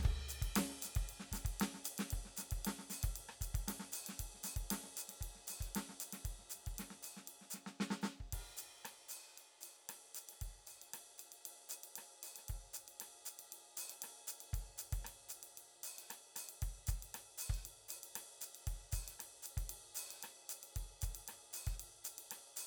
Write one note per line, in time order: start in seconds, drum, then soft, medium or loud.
0.01 snare soft
0.01 ride medium
0.05 kick medium
0.18 snare soft
0.29 hi-hat pedal medium
0.29 ride medium
0.42 kick soft
0.42 ride medium
0.56 snare medium
0.56 ride loud
0.70 snare soft
0.82 snare soft
0.82 hi-hat pedal medium
0.82 ride medium
0.95 kick medium
0.95 ride medium
1.09 ride medium
1.20 snare soft
1.32 kick soft
1.32 snare soft
1.32 hi-hat pedal medium
1.32 ride medium
1.45 kick soft
1.45 ride medium
1.60 snare medium
1.60 ride medium
1.74 snare soft
1.85 hi-hat pedal medium
1.85 ride medium
1.98 snare medium
1.98 ride medium
2.11 kick soft
2.11 ride medium
2.25 snare soft
2.37 snare soft
2.37 hi-hat pedal medium
2.37 ride medium
2.51 kick soft
2.51 ride medium
2.65 snare medium
2.65 ride loud
2.79 snare soft
2.90 snare soft
2.90 hi-hat pedal medium
3.03 kick soft
3.03 ride medium
3.16 ride medium
3.29 cross-stick medium
3.41 kick soft
3.41 hi-hat pedal medium
3.41 ride medium
3.55 kick soft
3.55 ride medium
3.68 snare soft
3.68 ride loud
3.80 snare soft
3.92 hi-hat pedal medium
3.92 ride medium
4.06 snare soft
4.06 ride medium
4.20 kick soft
4.20 ride medium
4.34 snare soft
4.44 snare soft
4.44 hi-hat pedal medium
4.44 ride medium
4.56 kick soft
4.56 ride medium
4.71 snare medium
4.71 ride loud
4.84 snare soft
4.97 hi-hat pedal medium
4.97 ride medium
5.09 snare soft
5.09 ride medium
5.21 kick soft
5.21 ride medium
5.35 snare soft
5.47 snare soft
5.47 hi-hat pedal medium
5.47 ride medium
5.61 kick soft
5.61 ride medium
5.75 snare medium
5.75 ride medium
5.89 snare soft
6.00 hi-hat pedal medium
6.00 ride medium
6.13 snare soft
6.13 ride medium
6.25 kick soft
6.25 ride medium
6.39 snare soft
6.50 hi-hat pedal medium
6.50 ride medium
6.55 snare soft
6.66 kick soft
6.66 ride soft
6.78 snare soft
6.78 ride medium
6.91 snare soft
7.03 hi-hat pedal medium
7.03 ride medium
7.17 snare soft
7.28 ride medium
7.41 snare soft
7.50 snare soft
7.50 hi-hat pedal medium
7.66 snare soft
7.80 snare medium
7.91 snare medium
8.02 snare medium
8.02 hi-hat pedal soft
8.20 kick soft
8.33 kick soft
8.33 ride medium
8.33 crash soft
8.57 hi-hat pedal medium
8.57 ride medium
8.85 cross-stick medium
8.85 ride medium
9.09 hi-hat pedal medium
9.09 ride medium
9.38 ride soft
9.61 hi-hat pedal soft
9.61 ride medium
9.89 cross-stick soft
9.89 ride medium
10.15 hi-hat pedal medium
10.15 ride medium
10.29 cross-stick soft
10.29 ride medium
10.41 kick soft
10.41 ride medium
10.67 hi-hat pedal soft
10.67 ride soft
10.82 ride soft
10.94 cross-stick soft
10.94 ride medium
11.18 hi-hat pedal soft
11.18 ride medium
11.32 ride soft
11.45 ride medium
11.69 hi-hat pedal medium
11.69 ride medium
11.84 ride medium
11.96 cross-stick soft
11.96 ride medium
12.23 hi-hat pedal medium
12.23 ride medium
12.36 cross-stick soft
12.36 ride medium
12.48 kick soft
12.48 ride medium
12.74 hi-hat pedal medium
12.74 ride medium
12.88 ride soft
13.00 cross-stick soft
13.00 ride medium
13.26 hi-hat pedal medium
13.26 ride medium
13.39 ride medium
13.52 ride medium
13.77 hi-hat pedal medium
13.77 ride medium
13.90 ride medium
14.02 cross-stick soft
14.02 ride medium
14.27 hi-hat pedal loud
14.27 ride medium
14.41 ride medium
14.53 kick soft
14.53 ride medium
14.78 hi-hat pedal medium
14.78 ride medium
14.93 kick soft
14.93 ride medium
15.05 cross-stick soft
15.05 ride medium
15.29 hi-hat pedal medium
15.29 ride medium
15.43 ride medium
15.58 ride medium
15.83 hi-hat pedal medium
15.83 ride medium
15.99 ride medium
16.10 cross-stick soft
16.10 ride medium
16.36 cross-stick soft
16.36 hi-hat pedal medium
16.36 ride medium
16.49 ride medium
16.62 kick soft
16.62 ride medium
16.87 kick soft
16.87 hi-hat pedal medium
16.87 ride medium
17.03 ride medium
17.14 cross-stick soft
17.14 ride medium
17.38 hi-hat pedal loud
17.38 ride medium
17.50 kick soft
17.54 ride soft
17.65 ride medium
17.88 hi-hat pedal medium
17.88 ride medium
18.03 ride medium
18.16 cross-stick soft
18.16 ride medium
18.41 hi-hat pedal medium
18.41 ride medium
18.55 ride soft
18.67 kick soft
18.67 ride medium
18.92 kick soft
18.92 hi-hat pedal medium
18.92 ride medium
19.08 ride medium
19.20 cross-stick soft
19.20 ride medium
19.43 hi-hat pedal medium
19.43 ride medium
19.57 kick soft
19.57 ride medium
19.70 ride medium
19.95 hi-hat pedal medium
19.95 ride medium
20.11 ride medium
20.23 cross-stick soft
20.23 ride medium
20.49 hi-hat pedal medium
20.49 ride medium
20.63 ride medium
20.76 kick soft
20.76 ride medium
21.02 kick soft
21.02 hi-hat pedal medium
21.02 ride medium
21.15 ride medium
21.28 cross-stick soft
21.28 ride medium
21.53 hi-hat pedal medium
21.53 ride medium
21.67 kick soft
21.67 ride medium
21.80 ride medium
22.05 hi-hat pedal medium
22.05 ride medium
22.18 ride medium
22.31 cross-stick soft
22.31 ride medium
22.56 hi-hat pedal medium
22.56 ride medium